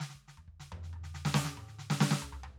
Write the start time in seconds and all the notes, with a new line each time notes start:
0.01 snare
0.10 snare
0.15 kick
0.29 snare
0.38 mid tom
0.49 kick
0.60 snare
0.73 mid tom
0.84 snare
0.94 high tom
1.04 snare
1.15 snare
1.26 snare
1.35 snare
1.45 snare
1.58 high tom
1.69 snare
1.79 snare
1.91 snare
2.01 snare
2.12 snare
2.23 floor tom
2.33 floor tom
2.44 floor tom